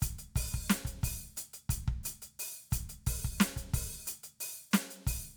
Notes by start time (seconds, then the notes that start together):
0.01 closed hi-hat, kick, hi-hat pedal
0.19 closed hi-hat
0.35 open hi-hat, kick, hi-hat pedal
0.54 kick
0.68 closed hi-hat, snare, hi-hat pedal
0.85 closed hi-hat, kick
1.02 open hi-hat, kick, hi-hat pedal
1.37 closed hi-hat, hi-hat pedal
1.54 closed hi-hat
1.70 open hi-hat, kick
1.88 kick
2.04 closed hi-hat, hi-hat pedal
2.22 closed hi-hat
2.40 open hi-hat
2.71 closed hi-hat, kick, hi-hat pedal
2.89 closed hi-hat
3.04 open hi-hat, kick, hi-hat pedal
3.25 kick
3.38 closed hi-hat, snare, hi-hat pedal
3.57 closed hi-hat, kick
3.74 open hi-hat, kick
4.06 closed hi-hat, hi-hat pedal
4.24 closed hi-hat
4.39 open hi-hat, hi-hat pedal
4.71 closed hi-hat, snare, hi-hat pedal
4.91 closed hi-hat
5.05 open hi-hat, kick, hi-hat pedal